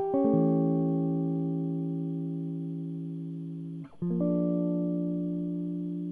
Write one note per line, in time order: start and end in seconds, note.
0.00 3.65 G4
0.14 3.89 C#4
0.25 2.12 A3
0.34 3.89 E3
4.03 6.12 F3
4.11 5.76 A#3
4.21 6.12 D4